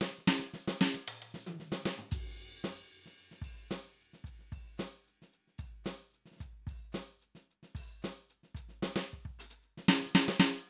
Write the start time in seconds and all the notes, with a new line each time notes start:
0.01 snare
0.11 snare
0.18 snare
0.28 snare
0.40 snare
0.54 snare
0.68 snare
0.81 snare
0.94 snare
1.08 mid tom
1.22 mid tom
1.34 snare
1.47 high tom
1.60 snare
1.72 snare
1.85 snare
1.98 floor tom
2.11 kick, ride
2.63 snare, closed hi-hat, hi-hat pedal
2.92 closed hi-hat
3.06 snare
3.19 closed hi-hat
3.31 snare
3.42 kick, open hi-hat
3.70 snare, closed hi-hat, hi-hat pedal
4.00 closed hi-hat
4.13 snare
4.24 kick, closed hi-hat
4.39 snare
4.52 kick, open hi-hat
4.78 snare, closed hi-hat, hi-hat pedal
5.07 closed hi-hat
5.22 snare
5.33 closed hi-hat
5.48 snare
5.58 kick, open hi-hat
5.84 snare, closed hi-hat, hi-hat pedal
6.14 closed hi-hat
6.26 snare
6.32 snare
6.37 kick, snare, closed hi-hat
6.43 snare
6.67 kick, open hi-hat
6.92 snare, closed hi-hat, hi-hat pedal
7.22 closed hi-hat
7.35 snare, closed hi-hat
7.51 closed hi-hat
7.63 snare
7.75 kick, open hi-hat
8.02 snare, closed hi-hat, hi-hat pedal
8.30 closed hi-hat
8.43 snare
8.55 kick, closed hi-hat
8.69 snare
8.82 snare
8.96 snare
9.13 kick
9.25 kick
9.39 closed hi-hat
9.50 closed hi-hat
9.63 closed hi-hat
9.78 snare
9.88 snare
10.01 snare
10.06 snare
10.11 snare
10.15 snare
10.28 snare
10.40 snare